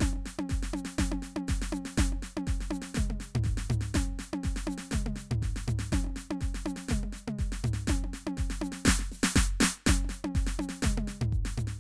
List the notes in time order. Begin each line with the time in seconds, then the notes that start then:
0.01 kick, snare, hi-hat pedal, high tom
0.13 high tom
0.16 high tom
0.26 snare, hi-hat pedal
0.39 high tom
0.50 kick, snare, hi-hat pedal
0.63 snare
0.74 hi-hat pedal, high tom
0.85 snare
0.99 kick, snare, hi-hat pedal, high tom
1.12 high tom
1.23 snare, hi-hat pedal
1.37 high tom
1.48 kick, snare, hi-hat pedal
1.62 snare
1.73 hi-hat pedal, high tom
1.86 snare
1.98 kick, snare, hi-hat pedal, high tom
2.13 high tom
2.23 snare, hi-hat pedal
2.37 high tom
2.47 kick, snare, hi-hat pedal
2.61 snare
2.71 hi-hat pedal, high tom
2.82 snare
2.95 kick, snare, hi-hat pedal, mid tom
3.11 mid tom
3.21 snare, hi-hat pedal
3.36 floor tom
3.44 kick, snare, hi-hat pedal
3.58 snare
3.70 floor tom, hi-hat pedal
3.81 snare
3.95 kick, snare, hi-hat pedal, high tom
4.19 snare, hi-hat pedal
4.34 high tom
4.44 kick, snare, hi-hat pedal
4.57 snare
4.68 hi-hat pedal, high tom
4.78 snare
4.92 kick, snare, hi-hat pedal, mid tom
5.07 mid tom
5.16 snare, hi-hat pedal
5.32 floor tom
5.42 kick, snare, hi-hat pedal
5.57 snare
5.68 floor tom, hi-hat pedal
5.79 snare
5.93 kick, snare, hi-hat pedal, high tom
6.05 high tom
6.07 high tom
6.10 high tom
6.16 snare, hi-hat pedal
6.31 high tom
6.41 kick, snare, hi-hat pedal
6.55 snare
6.66 hi-hat pedal, high tom
6.77 snare
6.89 kick, snare, hi-hat pedal, mid tom
7.04 mid tom
7.13 snare, hi-hat pedal
7.28 mid tom
7.39 kick, snare, hi-hat pedal
7.53 snare
7.65 floor tom, hi-hat pedal
7.74 snare
7.88 kick, snare, hi-hat pedal, high tom
8.04 high tom
8.14 snare, hi-hat pedal
8.27 high tom
8.38 kick, snare, hi-hat pedal
8.51 snare
8.62 hi-hat pedal, high tom
8.73 snare
8.86 kick, snare, hi-hat pedal
8.88 snare
9.00 snare
9.02 snare
9.10 kick, snare, hi-hat pedal
9.24 snare
9.36 kick, snare, hi-hat pedal
9.61 snare, hi-hat pedal
9.63 snare
9.86 kick, snare, hi-hat pedal, high tom
10.05 high tom
10.10 snare, hi-hat pedal
10.25 high tom
10.36 kick, snare, hi-hat pedal
10.47 snare
10.60 hi-hat pedal, high tom
10.69 snare
10.83 kick, snare, hi-hat pedal, mid tom
10.98 mid tom
11.08 snare, hi-hat pedal
11.22 floor tom
11.33 kick, hi-hat pedal
11.46 snare
11.58 floor tom, hi-hat pedal
11.68 snare